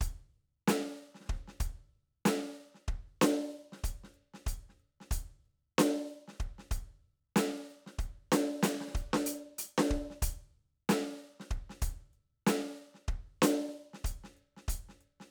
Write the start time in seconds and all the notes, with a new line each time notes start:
0.01 closed hi-hat, kick
0.34 closed hi-hat
0.68 closed hi-hat, snare
0.99 closed hi-hat
1.15 snare
1.20 snare
1.25 snare
1.28 kick, snare, closed hi-hat
1.31 snare
1.48 snare
1.60 closed hi-hat, kick
2.26 closed hi-hat, snare
2.57 closed hi-hat
2.75 snare
2.88 kick, closed hi-hat
3.22 closed hi-hat, snare
3.53 snare
3.72 snare
3.76 snare
3.83 closed hi-hat, kick, snare
4.04 snare
4.14 closed hi-hat
4.34 snare
4.47 closed hi-hat, kick
4.69 snare
4.80 closed hi-hat
5.01 snare
5.11 closed hi-hat, kick
5.46 closed hi-hat
5.78 closed hi-hat, snare
6.10 closed hi-hat
6.28 snare
6.32 snare
6.40 kick, closed hi-hat
6.59 snare
6.71 closed hi-hat, kick
7.36 closed hi-hat, snare
7.64 snare
7.69 closed hi-hat
7.87 snare
7.99 closed hi-hat, kick
8.32 closed hi-hat, snare
8.63 closed hi-hat, snare
8.81 snare
8.88 snare
8.91 snare
8.93 closed hi-hat, kick, snare
9.13 snare
9.26 closed hi-hat
9.59 closed hi-hat
9.78 snare
9.91 kick
10.10 snare
10.22 closed hi-hat, kick
10.89 closed hi-hat, snare
11.12 snare
11.20 closed hi-hat
11.40 snare
11.51 kick, closed hi-hat
11.70 snare
11.82 closed hi-hat, kick
12.13 closed hi-hat
12.47 closed hi-hat, snare
12.78 closed hi-hat
12.94 snare
13.08 kick, closed hi-hat
13.42 closed hi-hat, snare
13.68 snare
13.74 closed hi-hat
13.94 snare
14.05 closed hi-hat, kick
14.24 snare
14.37 closed hi-hat
14.57 snare
14.68 closed hi-hat, kick
14.89 snare
15.01 closed hi-hat
15.20 snare